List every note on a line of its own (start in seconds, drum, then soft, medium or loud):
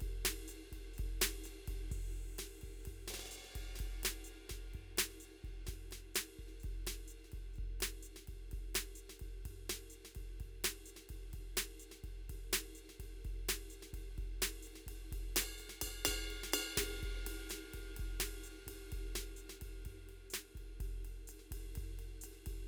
0.01 kick soft
0.01 ride soft
0.08 kick soft
0.25 snare medium
0.25 ride medium
0.48 hi-hat pedal medium
0.48 ride soft
0.73 kick soft
0.73 ride soft
0.78 kick soft
0.94 hi-hat pedal soft
0.98 kick soft
0.98 ride soft
1.06 kick soft
1.22 snare loud
1.22 ride medium
1.30 snare soft
1.44 snare soft
1.44 hi-hat pedal medium
1.44 ride soft
1.68 kick soft
1.68 ride soft
1.74 kick soft
1.89 kick soft
1.89 hi-hat pedal soft
1.89 crash medium
2.38 snare medium
2.38 hi-hat pedal medium
2.38 ride medium
2.62 kick soft
2.62 ride soft
2.67 kick soft
2.67 snare soft
2.80 hi-hat pedal soft
2.86 kick soft
2.86 ride soft
2.93 kick soft
3.08 snare medium
3.08 ride soft
3.14 snare soft
3.20 snare soft
3.26 snare soft
3.31 snare soft
3.31 hi-hat pedal medium
3.31 ride soft
3.38 snare soft
3.44 snare soft
3.51 snare soft
3.56 kick soft
3.56 ride medium
3.61 kick soft
3.76 snare soft
3.76 ride medium
3.80 kick soft
3.86 kick soft
4.04 snare medium
4.04 ride medium
4.25 hi-hat pedal medium
4.25 ride soft
4.50 kick soft
4.50 snare soft
4.50 ride soft
4.56 kick soft
4.74 kick soft
4.74 ride soft
4.81 kick soft
4.98 snare loud
4.98 ride medium
5.11 snare soft
5.20 hi-hat pedal medium
5.25 snare soft
5.30 snare soft
5.44 kick soft
5.44 ride soft
5.50 kick soft
5.65 kick soft
5.65 snare soft
5.65 hi-hat pedal soft
5.65 ride soft
5.74 kick soft
5.91 snare soft
5.91 ride soft
6.15 snare medium
6.15 hi-hat pedal medium
6.15 ride medium
6.39 kick soft
6.48 snare soft
6.60 hi-hat pedal soft
6.60 ride soft
6.65 kick soft
6.70 kick soft
6.87 snare medium
6.87 ride medium
7.08 hi-hat pedal medium
7.08 ride soft
7.24 snare soft
7.32 kick soft
7.32 ride soft
7.39 kick soft
7.54 hi-hat pedal soft
7.54 ride soft
7.59 kick soft
7.64 kick soft
7.81 snare medium
7.81 ride medium
8.03 hi-hat pedal medium
8.16 snare soft
8.28 kick soft
8.28 ride soft
8.34 kick soft
8.52 kick soft
8.52 ride soft
8.59 kick soft
8.75 snare medium
8.75 ride medium
8.96 hi-hat pedal medium
9.10 snare soft
9.20 kick soft
9.20 ride soft
9.27 kick soft
9.46 kick soft
9.46 ride soft
9.51 kick soft
9.70 snare medium
9.70 ride medium
9.90 hi-hat pedal medium
10.05 snare soft
10.15 kick soft
10.15 ride soft
10.22 kick soft
10.40 kick soft
10.40 ride soft
10.46 kick soft
10.64 snare medium
10.64 ride medium
10.86 hi-hat pedal medium
10.97 snare soft
11.09 kick soft
11.09 ride soft
11.16 kick soft
11.33 kick soft
11.33 ride soft
11.39 kick soft
11.57 snare medium
11.57 ride medium
11.80 hi-hat pedal medium
11.92 snare soft
12.04 kick soft
12.04 ride soft
12.09 kick soft
12.30 kick soft
12.30 ride soft
12.35 kick soft
12.53 snare medium
12.53 ride medium
12.75 hi-hat pedal medium
12.89 snare soft
13.00 kick soft
13.00 ride soft
13.05 kick soft
13.16 snare soft
13.25 kick soft
13.25 ride soft
13.31 kick soft
13.49 snare medium
13.49 ride medium
13.70 hi-hat pedal medium
13.83 snare soft
13.94 kick soft
13.94 ride soft
13.99 kick soft
14.18 kick soft
14.18 ride soft
14.24 kick soft
14.42 snare medium
14.42 ride medium
14.63 hi-hat pedal medium
14.67 ride soft
14.76 snare soft
14.87 kick soft
14.87 ride medium
14.92 kick soft
15.12 kick soft
15.12 ride medium
15.18 kick soft
15.36 snare medium
15.36 ride bell loud
15.58 hi-hat pedal medium
15.58 ride soft
15.70 snare soft
15.82 kick soft
15.82 ride bell medium
15.88 kick soft
16.05 kick soft
16.05 snare medium
16.05 ride bell loud
16.31 ride soft
16.44 snare medium
16.53 hi-hat pedal medium
16.53 ride bell loud
16.78 kick soft
16.78 snare medium
16.78 ride loud
16.83 kick soft
17.03 kick soft
17.03 ride soft
17.09 kick soft
17.20 snare soft
17.27 ride medium
17.50 snare medium
17.50 hi-hat pedal medium
17.50 ride medium
17.74 kick soft
17.74 ride medium
17.79 kick soft
17.85 snare soft
17.94 hi-hat pedal soft
17.94 ride medium
18.00 kick soft
18.05 kick soft
18.20 snare medium
18.20 ride medium
18.44 hi-hat pedal medium
18.52 snare soft
18.56 snare soft
18.67 kick soft
18.67 ride medium
18.72 kick soft
18.92 kick soft
18.92 ride soft
18.98 kick soft
19.16 snare medium
19.16 ride medium
19.37 hi-hat pedal medium
19.37 ride soft
19.50 snare soft
19.62 kick soft
19.62 ride soft
19.67 kick soft
19.85 kick soft
19.85 ride soft
19.92 kick soft
20.09 ride soft
20.30 snare medium
20.30 hi-hat pedal medium
20.34 ride soft
20.56 kick soft
20.56 ride soft
20.61 kick soft
20.81 kick soft
20.81 ride soft
20.86 kick soft
20.92 snare soft
21.01 snare soft
21.01 ride soft
21.28 hi-hat pedal medium
21.28 ride soft
21.39 snare soft
21.52 kick soft
21.52 ride medium
21.57 kick soft
21.76 kick soft
21.76 ride soft
21.84 kick soft
21.99 ride soft
22.22 hi-hat pedal medium
22.22 ride medium
22.33 snare soft
22.46 kick soft
22.46 ride medium
22.53 kick soft